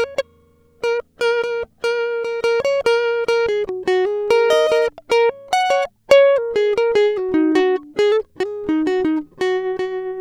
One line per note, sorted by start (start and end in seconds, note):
0.00 0.07 A#4
0.20 0.33 C5
0.85 1.04 A#4
1.23 1.43 A#4
1.43 1.69 A#4
1.85 2.25 A#4
2.26 2.43 A#4
2.46 2.64 A#4
2.66 2.84 C#5
2.88 3.28 A#4
3.30 3.55 A#4
3.50 3.67 G#4
3.71 3.86 F#4
3.89 4.06 F#4
4.06 4.59 G#4
4.32 4.70 A#4
4.52 4.91 D#5
4.73 4.93 A#4
5.13 5.31 A#4
5.31 5.70 C#5
5.54 5.92 F#5
5.72 5.91 C#5
6.13 6.38 C#5
6.38 6.74 A#4
6.57 6.78 G#4
6.79 7.04 A#4
6.97 7.18 G#4
7.19 7.55 F#4
7.36 7.61 D#4
7.57 7.83 F#4
7.61 7.96 D4
8.00 8.26 G#4
8.42 8.77 G#4
8.71 8.88 D#4
8.88 9.00 D4
8.88 9.11 F#4
9.06 9.24 D#4
9.43 9.81 F#4
9.81 10.21 F#4